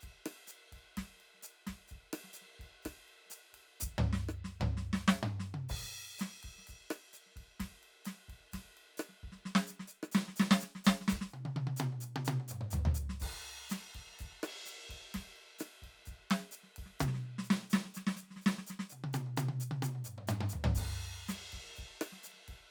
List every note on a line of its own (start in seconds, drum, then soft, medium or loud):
0.01 kick soft
0.01 hi-hat pedal soft
0.01 ride soft
0.08 kick soft
0.26 cross-stick medium
0.26 ride loud
0.48 hi-hat pedal medium
0.48 ride soft
0.73 kick soft
0.73 ride soft
0.98 kick soft
0.98 snare medium
0.98 ride medium
1.03 kick soft
1.16 snare soft
1.21 ride soft
1.35 snare soft
1.39 snare soft
1.43 hi-hat pedal medium
1.43 ride soft
1.67 kick soft
1.67 snare medium
1.67 ride medium
1.86 snare soft
1.86 hi-hat pedal soft
1.86 ride soft
1.92 kick soft
1.97 kick soft
2.13 cross-stick medium
2.13 ride loud
2.24 snare soft
2.34 hi-hat pedal medium
2.38 snare soft
2.38 ride soft
2.46 snare soft
2.49 snare soft
2.51 snare soft
2.60 kick soft
2.60 ride soft
2.83 kick soft
2.83 cross-stick medium
2.83 hi-hat pedal soft
2.83 ride medium
3.09 ride soft
3.26 snare soft
3.31 hi-hat pedal medium
3.31 ride medium
3.53 kick soft
3.53 ride medium
3.81 kick soft
3.81 hi-hat pedal loud
3.89 kick soft
3.99 floor tom loud
4.04 floor tom soft
4.13 snare medium
4.29 cross-stick medium
4.45 snare medium
4.61 kick soft
4.61 floor tom loud
4.66 kick soft
4.78 snare medium
4.94 snare loud
5.08 snare loud
5.23 mid tom loud
5.40 snare medium
5.55 high tom medium
5.69 kick soft
5.69 hi-hat pedal medium
5.69 crash medium
5.82 kick soft
5.82 snare soft
6.19 snare medium
6.19 hi-hat pedal medium
6.19 ride medium
6.43 kick soft
6.43 ride medium
6.50 kick soft
6.59 snare soft
6.68 kick soft
6.68 hi-hat pedal soft
6.68 ride soft
6.74 kick soft
6.91 cross-stick medium
6.91 ride medium
7.14 hi-hat pedal medium
7.14 ride soft
7.27 snare soft
7.36 kick soft
7.36 ride soft
7.42 kick soft
7.60 kick soft
7.60 snare medium
7.60 hi-hat pedal soft
7.60 ride medium
7.66 kick soft
7.84 ride soft
8.05 snare medium
8.05 hi-hat pedal medium
8.05 ride medium
8.29 kick soft
8.29 ride soft
8.34 kick soft
8.52 kick soft
8.52 snare medium
8.52 hi-hat pedal soft
8.52 ride medium
8.59 kick soft
8.78 ride soft
8.98 cross-stick medium
8.98 hi-hat pedal medium
8.98 ride medium
9.09 snare soft
9.24 kick soft
9.29 kick soft
9.29 snare soft
9.46 snare medium
9.56 snare loud
9.67 snare soft
9.67 hi-hat pedal medium
9.80 snare medium
9.88 hi-hat pedal medium
10.03 cross-stick medium
10.12 snare loud
10.12 hi-hat pedal medium
10.29 snare soft
10.36 snare loud
10.36 hi-hat pedal medium
10.51 snare loud
10.60 snare soft
10.60 hi-hat pedal medium
10.76 snare soft
10.85 kick soft
10.85 snare loud
10.85 hi-hat pedal medium
11.01 snare soft
11.08 kick soft
11.08 snare loud
11.08 hi-hat pedal medium
11.18 kick soft
11.18 snare medium
11.30 hi-hat pedal soft
11.34 high tom medium
11.46 high tom medium
11.57 high tom loud
11.68 high tom medium
11.77 hi-hat pedal medium
11.77 high tom loud
11.93 high tom soft
12.01 hi-hat pedal medium
12.01 high tom soft
12.16 high tom loud
12.25 hi-hat pedal medium
12.25 high tom loud
12.40 high tom medium
12.48 hi-hat pedal medium
12.48 mid tom medium
12.61 mid tom medium
12.71 floor tom loud
12.71 hi-hat pedal medium
12.86 floor tom loud
12.95 kick soft
12.95 hi-hat pedal medium
13.10 snare medium
13.20 kick soft
13.20 hi-hat pedal medium
13.20 crash medium
13.70 snare medium
13.70 hi-hat pedal medium
13.70 ride medium
13.95 kick soft
13.95 ride medium
14.00 kick soft
14.09 snare soft
14.12 snare soft
14.19 kick soft
14.19 hi-hat pedal soft
14.19 ride medium
14.26 kick soft
14.44 cross-stick medium
14.44 ride medium
14.66 hi-hat pedal medium
14.66 ride soft
14.90 kick soft
14.90 ride soft
15.15 kick soft
15.15 snare medium
15.15 hi-hat pedal soft
15.15 ride medium
15.21 kick soft
15.36 ride soft
15.59 cross-stick medium
15.59 hi-hat pedal medium
15.59 ride medium
15.83 kick soft
15.83 ride soft
15.99 snare soft
16.06 kick soft
16.06 hi-hat pedal soft
16.06 ride soft
16.31 snare medium
16.31 ride medium
16.40 snare soft
16.52 hi-hat pedal medium
16.52 ride soft
16.64 snare soft
16.77 kick soft
16.77 ride medium
16.86 snare soft
17.00 kick soft
17.00 hi-hat pedal medium
17.00 high tom loud
17.08 snare soft
17.15 snare soft
17.39 snare medium
17.44 hi-hat pedal soft
17.51 snare loud
17.63 snare soft
17.70 snare loud
17.70 hi-hat pedal medium
17.86 snare soft
17.95 snare medium
17.95 hi-hat pedal medium
18.07 snare loud
18.17 snare soft
18.17 hi-hat pedal medium
18.23 snare soft
18.28 snare soft
18.31 snare soft
18.37 snare soft
18.42 hi-hat pedal soft
18.47 snare loud
18.59 snare soft
18.67 snare soft
18.67 hi-hat pedal medium
18.80 snare medium
18.90 hi-hat pedal medium
18.90 high tom soft
19.04 high tom medium
19.14 hi-hat pedal medium
19.14 high tom loud
19.27 high tom soft
19.37 hi-hat pedal medium
19.37 high tom loud
19.49 high tom medium
19.61 hi-hat pedal medium
19.72 high tom loud
19.83 hi-hat pedal medium
19.83 high tom loud
19.95 high tom soft
20.05 hi-hat pedal medium
20.05 mid tom medium
20.18 mid tom medium
20.28 hi-hat pedal medium
20.28 mid tom loud
20.41 mid tom loud
20.50 hi-hat pedal medium
20.54 floor tom medium
20.65 floor tom loud
20.75 kick medium
20.75 hi-hat pedal medium
20.75 crash medium
21.29 snare medium
21.29 hi-hat pedal medium
21.29 ride medium
21.53 kick soft
21.53 snare soft
21.53 ride medium
21.59 kick soft
21.63 snare soft
21.66 snare soft
21.69 snare soft
21.73 snare soft
21.73 hi-hat pedal soft
21.77 kick soft
21.77 ride soft
21.84 kick soft
22.02 cross-stick medium
22.02 ride loud
22.13 snare soft
22.24 snare soft
22.24 hi-hat pedal medium
22.24 ride soft
22.34 snare soft
22.37 snare soft
22.49 kick soft
22.49 ride medium
22.54 kick soft